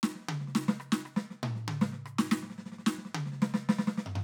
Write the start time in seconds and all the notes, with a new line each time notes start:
0.04 snare
0.16 snare
0.21 snare
0.26 snare, high tom
0.41 snare
0.48 snare
0.56 snare
0.69 snare
0.80 cross-stick
0.93 snare
1.06 cross-stick
1.17 snare
1.31 snare
1.44 mid tom
1.56 snare
1.68 high tom
1.82 snare
1.93 snare
2.06 cross-stick
2.19 snare
2.32 snare
2.43 snare
2.50 snare
2.59 snare
2.66 snare
2.72 snare
2.79 snare
2.87 snare
2.99 snare
3.05 snare
3.15 high tom
3.26 snare
3.33 snare
3.39 snare
3.42 snare
3.54 snare
3.69 snare
3.79 snare
3.88 snare
3.98 snare
4.07 floor tom
4.16 floor tom